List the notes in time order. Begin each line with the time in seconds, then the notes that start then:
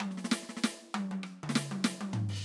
0.00 high tom
0.11 snare
0.17 snare
0.24 snare
0.31 snare
0.43 snare
0.49 snare
0.57 snare
0.64 snare
0.94 high tom
1.11 high tom
1.23 cross-stick
1.43 mid tom
1.49 snare
1.55 snare
1.71 high tom
1.84 snare
2.01 high tom
2.13 floor tom
2.29 crash
2.35 hi-hat pedal